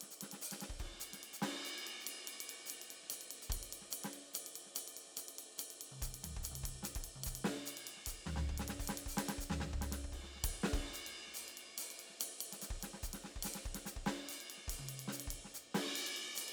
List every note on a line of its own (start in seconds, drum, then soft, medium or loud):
0.01 snare soft
0.01 ride medium
0.11 hi-hat pedal medium
0.21 snare soft
0.21 ride medium
0.32 snare soft
0.32 ride medium
0.42 hi-hat pedal loud
0.51 snare soft
0.51 ride medium
0.61 snare soft
0.61 ride medium
0.70 kick soft
0.79 kick soft
0.79 ride medium
0.93 snare soft
1.00 hi-hat pedal loud
1.00 ride medium
1.13 snare soft
1.13 ride medium
1.23 ride medium
1.33 hi-hat pedal medium
1.42 snare medium
1.42 ride loud
1.65 hi-hat pedal medium
1.65 ride medium
1.78 ride medium
1.87 ride medium
2.01 hi-hat pedal soft
2.07 ride loud
2.27 ride medium
2.41 ride medium
2.49 ride medium
2.66 hi-hat pedal medium
2.70 ride medium
2.82 ride medium
2.90 ride medium
3.03 snare soft
3.10 hi-hat pedal medium
3.10 ride loud
3.21 ride medium
3.31 ride medium
3.42 open hi-hat medium
3.50 kick soft
3.50 ride loud
3.63 ride medium
3.73 ride medium
3.81 snare soft
3.91 hi-hat pedal medium
3.91 ride loud
4.04 snare soft
4.04 ride medium
4.13 ride medium
4.34 hi-hat pedal medium
4.34 ride loud
4.46 ride medium
4.54 hi-hat pedal soft
4.54 ride medium
4.66 snare soft
4.75 hi-hat pedal medium
4.75 ride loud
4.88 ride medium
4.97 ride medium
5.07 snare soft
5.17 hi-hat pedal medium
5.17 ride medium
5.29 ride medium
5.39 ride medium
5.58 hi-hat pedal medium
5.58 ride loud
5.70 ride medium
5.81 ride medium
5.92 high tom soft
6.02 kick soft
6.02 hi-hat pedal loud
6.02 ride medium
6.14 ride medium
6.21 floor tom medium
6.21 hi-hat pedal soft
6.21 ride medium
6.37 kick soft
6.43 hi-hat pedal medium
6.43 ride medium
6.52 high tom soft
6.56 ride medium
6.62 kick soft
6.62 hi-hat pedal soft
6.62 ride medium
6.83 snare soft
6.83 hi-hat pedal medium
6.83 ride medium
6.95 kick soft
6.95 ride medium
7.04 ride medium
7.16 high tom soft
7.24 kick soft
7.24 hi-hat pedal medium
7.24 ride medium
7.35 ride medium
7.44 snare medium
7.44 ride medium
7.66 hi-hat pedal medium
7.66 ride medium
7.77 ride medium
7.87 ride medium
7.97 snare soft
8.06 kick soft
8.06 hi-hat pedal medium
8.06 ride medium
8.26 snare soft
8.26 floor tom medium
8.36 snare soft
8.36 floor tom medium
8.49 kick soft
8.58 snare soft
8.58 ride medium
8.68 snare soft
8.68 ride medium
8.80 kick soft
8.80 hi-hat pedal medium
8.88 snare medium
8.88 ride medium
8.98 ride medium
9.06 kick soft
9.06 hi-hat pedal medium
9.17 snare medium
9.17 ride medium
9.28 snare medium
9.28 ride medium
9.38 kick soft
9.38 hi-hat pedal medium
9.50 snare medium
9.50 floor tom medium
9.60 snare medium
9.60 floor tom medium
9.73 kick soft
9.81 snare soft
9.81 ride medium
9.92 snare soft
9.92 ride medium
10.04 kick soft
10.12 kick soft
10.12 ride medium
10.23 snare soft
10.36 snare soft
10.44 kick medium
10.44 ride loud
10.54 ride soft
10.63 snare medium
10.73 kick medium
10.73 ride medium
10.90 snare soft
10.94 hi-hat pedal medium
10.94 ride medium
11.07 ride medium
11.27 snare soft
11.34 hi-hat pedal medium
11.34 ride medium
11.48 ride medium
11.57 ride medium
11.78 hi-hat pedal loud
11.78 ride loud
11.91 ride medium
11.99 ride medium
12.10 snare soft
12.20 hi-hat pedal loud
12.20 ride loud
12.40 hi-hat pedal soft
12.40 ride loud
12.52 snare soft
12.52 ride medium
12.62 snare soft
12.62 hi-hat pedal medium
12.62 ride medium
12.70 kick soft
12.80 snare soft
12.80 hi-hat pedal soft
12.80 ride medium
12.93 snare soft
13.03 kick soft
13.03 hi-hat pedal medium
13.13 snare soft
13.13 ride medium
13.20 snare soft
13.20 hi-hat pedal soft
13.20 ride soft
13.36 kick soft
13.43 snare soft
13.43 hi-hat pedal loud
13.43 ride loud
13.54 snare soft
13.54 ride medium
13.64 kick soft
13.64 hi-hat pedal soft
13.75 snare soft
13.75 ride medium
13.86 snare soft
13.86 hi-hat pedal medium
13.96 kick soft
14.06 snare medium
14.06 ride medium
14.29 hi-hat pedal medium
14.29 ride medium
14.41 ride medium
14.49 hi-hat pedal soft
14.49 ride medium
14.57 snare soft
14.68 kick soft
14.68 hi-hat pedal medium
14.68 ride medium
14.79 high tom medium
14.89 hi-hat pedal soft
14.89 ride medium
14.99 ride medium
15.08 snare medium
15.12 hi-hat pedal loud
15.20 ride medium
15.27 kick soft
15.27 ride medium
15.45 snare soft
15.54 hi-hat pedal loud
15.75 snare medium
15.75 hi-hat pedal soft
15.75 ride loud
15.96 hi-hat pedal medium
15.96 ride medium
16.07 ride medium
16.15 hi-hat pedal soft
16.15 ride medium
16.24 snare soft
16.35 hi-hat pedal loud
16.35 ride loud
16.48 ride medium